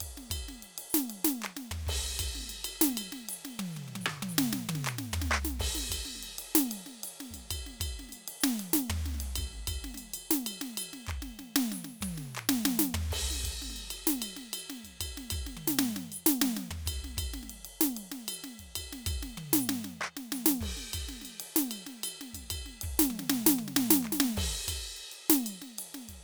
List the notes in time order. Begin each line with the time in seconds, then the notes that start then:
0.01 kick, hi-hat pedal, ride
0.18 snare
0.31 kick, ride bell
0.49 snare
0.63 ride
0.78 ride
0.90 hi-hat pedal
0.95 snare
1.10 ride
1.25 snare
1.42 percussion
1.57 snare
1.72 floor tom
1.87 kick, hi-hat pedal, crash
2.06 snare
2.20 kick, ride bell
2.26 kick
2.36 snare
2.41 snare
2.46 snare
2.50 ride bell
2.65 ride bell
2.82 snare
2.90 snare
2.98 ride bell
3.13 snare
3.29 hi-hat pedal, ride
3.45 snare
3.60 high tom
3.72 hi-hat pedal
3.77 high tom
3.87 high tom, crash
3.96 open hi-hat, high tom
4.01 hi-hat pedal
4.06 cross-stick
4.23 high tom
4.29 hi-hat pedal
4.39 snare
4.53 snare
4.69 mid tom
4.76 snare
4.85 percussion, hi-hat pedal
4.99 snare
5.12 floor tom, hi-hat pedal
5.22 snare
5.31 percussion
5.41 hi-hat pedal
5.45 snare
5.60 kick, hi-hat pedal, crash
5.75 snare
5.90 kick, ride bell
6.06 snare
6.16 snare
6.23 ride
6.39 ride
6.55 snare
6.72 ride
6.87 snare
7.04 hi-hat pedal, ride
7.21 snare
7.31 kick, snare, ride bell
7.50 kick, hi-hat pedal, ride bell
7.67 snare
7.81 kick, ride bell
7.87 kick
8.00 snare
8.09 snare, ride bell
8.28 ride
8.41 snare, hi-hat pedal
8.60 ride
8.74 snare
8.90 floor tom
9.06 snare
9.15 snare, hi-hat pedal
9.21 ride
9.36 kick, snare, ride bell
9.53 snare
9.68 kick, ride bell
9.74 kick
9.85 snare
9.95 snare, ride bell
10.14 ride bell
10.31 snare
10.47 ride bell
10.62 snare
10.78 hi-hat pedal, ride bell
10.94 snare
11.07 kick, percussion
11.14 kick
11.18 kick
11.23 snare
11.39 snare
11.56 snare
11.72 snare, hi-hat pedal
11.85 snare
12.01 kick, hi-hat pedal, open hi-hat, high tom
12.18 snare
12.35 percussion
12.49 snare
12.66 snare
12.79 snare
12.95 floor tom
13.11 kick, hi-hat pedal, crash
13.31 snare
13.44 kick, ride
13.62 snare
13.70 snare
13.76 snare, ride bell
13.91 ride bell
14.07 snare, hi-hat pedal
14.22 ride bell
14.37 snare
14.54 hi-hat pedal, ride bell
14.70 snare
14.84 kick, snare, ride bell
15.01 kick, hi-hat pedal, ride bell
15.18 snare
15.31 kick, ride bell
15.39 kick
15.47 snare
15.57 mid tom
15.68 snare
15.79 snare, hi-hat pedal
15.97 snare
16.12 hi-hat pedal, ride bell
16.27 snare
16.42 snare
16.57 snare
16.68 snare, floor tom
16.86 kick, hi-hat pedal, ride bell
17.05 snare
17.18 kick, ride bell
17.34 snare
17.43 snare
17.50 ride
17.65 ride
17.81 snare, hi-hat pedal
17.97 ride
18.12 snare
18.29 hi-hat pedal, ride bell
18.44 snare
18.60 kick, snare, ride
18.76 kick, ride bell
18.93 snare
19.07 kick, ride bell
19.14 kick
19.23 snare
19.38 mid tom
19.54 snare
19.61 hi-hat pedal
19.70 snare
19.85 snare
20.01 percussion
20.17 snare
20.33 snare, hi-hat pedal
20.46 snare
20.61 kick, crash
20.67 kick
20.77 snare
20.94 kick, ride bell
21.09 snare
21.22 snare, ride bell
21.40 ride
21.57 snare
21.71 ride bell
21.87 snare
22.04 hi-hat pedal, ride bell
22.21 snare
22.34 kick, snare, ride bell
22.51 kick, ride bell
22.66 snare
22.82 kick, ride
22.90 kick
23.00 snare
23.11 high tom
23.16 snare, hi-hat pedal
23.30 snare
23.47 snare
23.59 hi-hat pedal, mid tom
23.68 snare
23.77 snare
23.85 hi-hat pedal
23.91 snare
24.03 percussion
24.13 snare
24.17 snare, hi-hat pedal
24.35 kick, hi-hat pedal, crash
24.50 kick
24.68 kick, ride bell
24.97 ride
25.12 ride
25.30 snare
25.47 ride bell
25.62 snare
25.79 hi-hat pedal, ride
25.95 snare
26.09 kick, ride